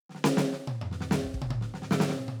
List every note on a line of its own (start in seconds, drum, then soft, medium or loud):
0.10 snare soft
0.15 snare soft
0.24 snare loud
0.37 snare loud
0.53 snare medium
0.67 high tom loud
0.81 mid tom loud
0.91 snare medium
1.01 snare medium
1.11 snare loud
1.25 kick soft
1.34 kick medium
1.42 high tom loud
1.51 high tom loud
1.61 snare medium
1.74 snare medium
1.82 snare medium
1.91 snare loud
2.00 snare loud
2.09 snare medium
2.18 high tom medium
2.28 high tom loud